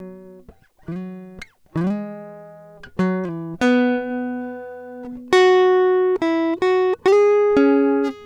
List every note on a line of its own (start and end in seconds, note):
0.01 0.14 F#3
0.89 1.31 F#3
1.77 2.78 G#3
3.00 3.25 F#3
3.25 3.59 E3
3.62 5.11 B3
5.33 6.19 F#4
6.22 6.58 E4
6.63 6.98 F#4
7.06 8.12 G#4
7.57 8.17 C#4